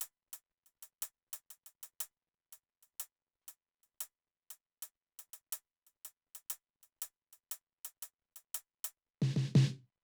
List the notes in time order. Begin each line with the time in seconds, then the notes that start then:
0.01 closed hi-hat
0.33 closed hi-hat
0.66 closed hi-hat
0.82 closed hi-hat
1.02 closed hi-hat
1.33 closed hi-hat
1.50 closed hi-hat
1.66 closed hi-hat
1.83 closed hi-hat
2.00 closed hi-hat
2.52 closed hi-hat
2.83 open hi-hat
3.00 closed hi-hat
3.48 closed hi-hat
3.83 open hi-hat
4.01 closed hi-hat
4.50 closed hi-hat
4.82 closed hi-hat
5.19 closed hi-hat
5.33 closed hi-hat
5.53 closed hi-hat
5.87 closed hi-hat
6.05 closed hi-hat
6.35 closed hi-hat
6.50 closed hi-hat
6.83 closed hi-hat
7.02 closed hi-hat
7.33 closed hi-hat
7.51 closed hi-hat
7.85 closed hi-hat
8.02 closed hi-hat
8.36 closed hi-hat
8.54 closed hi-hat
8.84 closed hi-hat
9.22 snare
9.36 snare
9.55 snare